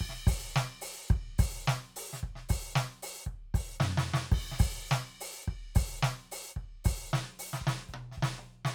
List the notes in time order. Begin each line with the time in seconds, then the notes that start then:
0.01 kick
0.10 snare
0.27 open hi-hat, kick
0.54 snare, hi-hat pedal
0.82 open hi-hat
1.08 kick, hi-hat pedal
1.39 open hi-hat, kick
1.65 snare, hi-hat pedal
1.96 open hi-hat
2.13 snare
2.19 kick, hi-hat pedal
2.36 snare
2.49 open hi-hat, kick
2.73 snare, hi-hat pedal
3.03 open hi-hat
3.24 kick, hi-hat pedal
3.55 open hi-hat, kick
3.75 hi-hat pedal
3.80 snare, mid tom
3.98 snare
4.06 hi-hat pedal
4.14 snare
4.32 kick, crash
4.52 snare
4.59 open hi-hat, kick
4.91 snare, hi-hat pedal
5.21 open hi-hat
5.43 hi-hat pedal
5.48 kick
5.75 open hi-hat, kick
5.99 hi-hat pedal
6.03 snare
6.32 open hi-hat
6.51 hi-hat pedal
6.57 kick
6.85 open hi-hat, kick
7.10 snare, hi-hat pedal
7.39 open hi-hat
7.54 snare, hi-hat pedal
7.62 kick
7.67 snare
7.89 kick, hi-hat pedal
7.94 high tom
8.12 snare, hi-hat pedal
8.18 kick
8.23 snare
8.29 hi-hat pedal
8.39 high tom
8.65 snare